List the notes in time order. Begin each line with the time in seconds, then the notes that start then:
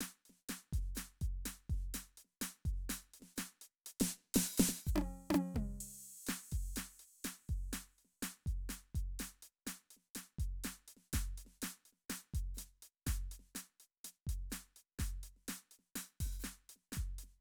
0.01 closed hi-hat, snare
0.26 closed hi-hat
0.30 snare
0.49 closed hi-hat, snare
0.73 open hi-hat, kick
0.79 snare
0.96 closed hi-hat, snare, hi-hat pedal
1.22 closed hi-hat, kick
1.46 open hi-hat, snare, hi-hat pedal
1.70 kick, snare, closed hi-hat
1.75 snare
1.95 open hi-hat, snare, hi-hat pedal
2.18 closed hi-hat
2.25 snare
2.42 open hi-hat, snare, hi-hat pedal
2.66 kick, closed hi-hat
2.74 snare
2.90 open hi-hat, snare, hi-hat pedal
3.14 closed hi-hat
3.20 snare
3.23 snare
3.36 closed hi-hat, snare, hi-hat pedal
3.62 closed hi-hat
3.87 closed hi-hat
4.01 closed hi-hat, snare
4.35 open hi-hat, snare
4.58 open hi-hat, snare
4.69 snare
4.86 kick, hi-hat pedal, crash
4.96 high tom
4.98 high tom
5.02 high tom
5.31 hi-hat pedal, high tom
5.35 high tom
5.55 kick, mid tom
5.81 crash
6.27 closed hi-hat, snare
6.52 closed hi-hat, kick
6.77 closed hi-hat, snare
7.00 closed hi-hat
7.25 closed hi-hat, snare
7.49 closed hi-hat, kick
7.73 closed hi-hat, snare
7.99 closed hi-hat
8.05 snare
8.23 closed hi-hat, snare
8.47 kick, closed hi-hat
8.70 closed hi-hat, snare, hi-hat pedal
8.95 closed hi-hat, kick
9.20 open hi-hat, snare
9.43 closed hi-hat
9.67 closed hi-hat, snare
9.91 closed hi-hat
9.97 snare
10.16 closed hi-hat, snare
10.39 closed hi-hat, kick
10.64 closed hi-hat, snare
10.88 closed hi-hat
10.97 snare
11.14 open hi-hat, kick, snare
11.38 closed hi-hat
11.46 snare
11.62 open hi-hat, snare
11.86 closed hi-hat
11.93 snare
12.10 open hi-hat, snare
12.34 closed hi-hat, kick
12.55 closed hi-hat, snare, hi-hat pedal
12.83 closed hi-hat
13.07 open hi-hat, kick, snare, hi-hat pedal
13.32 closed hi-hat
13.40 snare
13.56 closed hi-hat, snare
13.80 closed hi-hat
14.05 closed hi-hat, snare
14.27 closed hi-hat, kick
14.51 closed hi-hat, snare, hi-hat pedal
14.77 closed hi-hat
14.99 open hi-hat, kick, snare, hi-hat pedal
15.24 closed hi-hat
15.37 snare
15.49 open hi-hat, snare
15.72 closed hi-hat
15.79 snare
15.96 open hi-hat, snare
16.21 open hi-hat, kick
16.27 snare
16.40 hi-hat pedal
16.44 closed hi-hat, snare
16.70 closed hi-hat
16.76 snare
16.93 closed hi-hat, snare
16.98 kick
17.19 closed hi-hat
17.24 snare